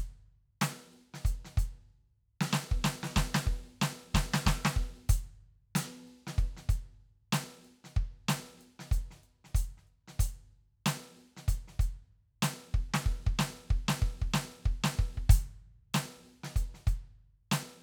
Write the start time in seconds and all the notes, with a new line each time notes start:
0.62 closed hi-hat, snare
0.94 closed hi-hat
1.14 snare
1.25 closed hi-hat, kick
1.45 snare
1.58 closed hi-hat, kick
2.41 snare
2.50 snare, hi-hat pedal
2.72 kick
2.84 snare
3.03 snare
3.16 kick, snare
3.35 snare
3.47 kick
3.52 snare
3.82 snare
4.15 kick, snare
4.34 snare
4.47 kick, snare
4.65 snare
4.77 kick
5.09 closed hi-hat, kick
5.75 closed hi-hat, snare
6.08 closed hi-hat
6.27 snare
6.38 kick, closed hi-hat
6.57 snare
6.69 closed hi-hat, kick
7.33 closed hi-hat, snare
7.65 closed hi-hat
7.84 snare
7.96 kick, closed hi-hat
8.29 closed hi-hat, snare
8.58 snare, closed hi-hat
8.80 snare
8.92 closed hi-hat, kick
9.11 snare
9.24 closed hi-hat
9.45 snare
9.55 closed hi-hat, kick
9.78 snare
9.87 closed hi-hat
10.08 snare
10.20 closed hi-hat, kick
10.86 closed hi-hat, snare
11.37 snare
11.48 closed hi-hat, kick
11.68 snare
11.80 closed hi-hat, kick
12.43 closed hi-hat, snare
12.74 kick
12.94 snare
13.06 kick
13.11 snare
13.27 kick
13.39 snare
13.71 kick
13.89 snare
14.02 kick
14.22 kick
14.30 kick, ride
14.34 snare
14.66 kick
14.84 snare
14.99 kick
15.18 kick
15.30 closed hi-hat, kick
15.94 closed hi-hat, snare
16.44 snare
16.56 closed hi-hat, kick
16.74 snare
16.87 closed hi-hat, kick
17.52 closed hi-hat, snare